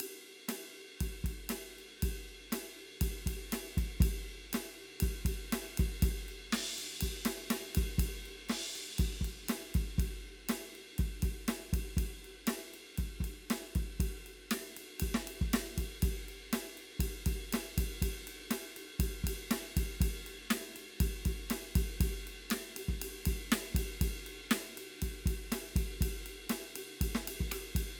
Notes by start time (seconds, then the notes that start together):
0.00 ride
0.48 snare, ride
1.01 kick, ride
1.24 kick, ride
1.49 snare, ride
1.79 ride
2.02 kick, ride
2.52 snare, ride
3.01 kick, ride
3.26 kick, ride
3.52 snare, ride
3.77 kick, ride
4.00 kick, ride
4.53 snare, ride
5.00 kick, ride
5.25 kick, ride
5.52 snare, ride
5.77 kick, ride
6.02 kick, ride
6.28 ride
6.52 snare, ride
6.78 ride
7.01 kick, ride
7.25 snare, ride
7.50 snare, ride
7.75 kick, ride
7.98 kick, ride
8.26 ride
8.49 snare, ride
8.75 ride
8.98 kick, ride
9.21 kick, ride
9.49 snare, ride
9.74 kick, ride
9.98 kick, ride
10.49 snare, ride
10.75 ride
10.98 kick, ride
11.22 kick, ride
11.48 snare, ride
11.73 kick, ride
11.97 kick, ride
12.24 ride
12.47 snare, ride
12.74 ride
12.98 kick, ride
13.20 kick, ride
13.50 snare, ride
13.75 kick, ride
14.00 kick, ride
14.26 ride
14.51 snare, ride
14.77 ride
15.00 kick, ride
15.14 snare
15.27 ride
15.41 kick
15.53 snare, ride
15.78 kick, ride
16.02 kick, ride
16.28 ride
16.53 snare, ride
16.77 ride
16.99 kick, ride
17.26 kick, ride
17.53 snare, ride
17.78 kick, ride
18.02 kick, ride
18.27 ride
18.51 snare, ride
18.76 ride
18.99 kick, ride
19.24 kick, ride
19.51 snare, ride
19.77 kick, ride
20.01 kick, ride
20.26 ride
20.50 snare, ride
20.76 ride
21.00 kick, ride
21.25 kick, ride
21.50 snare, ride
21.75 kick, ride
22.00 kick, ride
22.27 ride
22.50 snare, ride
22.76 ride
22.88 kick
23.02 ride
23.26 kick, ride
23.52 snare, ride
23.75 kick, ride
24.01 kick, ride
24.26 ride
24.51 snare, ride
24.77 ride
25.02 kick, ride
25.26 kick, ride
25.52 snare, ride
25.76 kick, ride
26.01 kick, ride
26.26 ride
26.49 snare, ride
26.76 ride
27.01 kick, ride
27.15 snare
27.27 ride
27.40 kick
27.51 cross-stick, ride
27.75 kick, ride